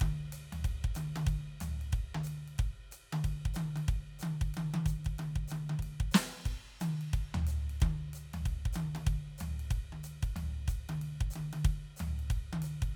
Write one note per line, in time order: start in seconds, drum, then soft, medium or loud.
0.01 kick medium
0.01 high tom loud
0.01 ride medium
0.33 hi-hat pedal medium
0.33 ride medium
0.53 floor tom medium
0.53 ride medium
0.65 kick medium
0.65 ride medium
0.85 kick medium
0.95 hi-hat pedal medium
0.95 high tom loud
0.95 ride medium
1.17 high tom loud
1.17 ride medium
1.27 kick medium
1.27 ride medium
1.61 floor tom loud
1.61 hi-hat pedal medium
1.61 ride medium
1.82 ride soft
1.93 kick medium
1.93 ride medium
2.15 high tom loud
2.24 hi-hat pedal medium
2.24 ride medium
2.49 ride soft
2.59 kick medium
2.59 ride medium
2.92 hi-hat pedal medium
2.92 ride medium
3.13 high tom loud
3.13 ride medium
3.25 kick medium
3.25 ride medium
3.46 kick medium
3.55 hi-hat pedal medium
3.55 high tom loud
3.55 ride medium
3.77 high tom medium
3.77 ride medium
3.89 kick medium
3.89 ride soft
4.19 kick soft
4.19 hi-hat pedal medium
4.19 ride medium
4.24 high tom loud
4.42 kick medium
4.42 ride soft
4.55 high tom loud
4.55 ride medium
4.75 high tom loud
4.87 kick medium
4.87 hi-hat pedal medium
4.87 ride medium
5.06 kick medium
5.06 ride soft
5.19 high tom loud
5.19 ride medium
5.36 kick soft
5.49 hi-hat pedal medium
5.49 high tom loud
5.49 ride medium
5.70 high tom loud
5.80 kick soft
5.80 ride medium
6.01 kick medium
6.12 snare loud
6.12 hi-hat pedal medium
6.12 crash medium
6.46 kick medium
6.46 ride medium
6.81 hi-hat pedal medium
6.81 high tom loud
6.81 ride medium
7.02 ride soft
7.14 kick medium
7.14 ride medium
7.35 floor tom loud
7.48 hi-hat pedal medium
7.48 ride medium
7.70 ride soft
7.81 kick medium
7.81 high tom loud
7.81 ride medium
8.14 hi-hat pedal medium
8.14 ride medium
8.34 floor tom medium
8.34 ride medium
8.46 kick medium
8.46 ride medium
8.66 kick medium
8.74 hi-hat pedal medium
8.74 high tom loud
8.74 ride medium
8.96 high tom medium
8.96 ride medium
9.07 kick medium
9.07 ride medium
9.39 floor tom medium
9.39 hi-hat pedal medium
9.39 ride medium
9.60 ride soft
9.71 kick medium
9.71 ride medium
9.93 high tom medium
10.04 hi-hat pedal medium
10.04 ride medium
10.23 kick medium
10.23 ride medium
10.37 floor tom loud
10.37 ride medium
10.69 kick medium
10.69 hi-hat pedal medium
10.69 ride medium
10.90 high tom loud
10.90 ride medium
11.02 ride medium
11.21 kick medium
11.31 hi-hat pedal medium
11.31 ride medium
11.36 kick soft
11.36 high tom loud
11.54 high tom medium
11.54 ride medium
11.65 kick medium
11.65 ride medium
11.97 floor tom loud
11.97 hi-hat pedal medium
11.97 ride medium
12.20 ride soft
12.31 kick medium
12.31 ride medium
12.54 high tom loud
12.63 hi-hat pedal medium
12.63 ride medium
12.83 kick medium
12.83 ride soft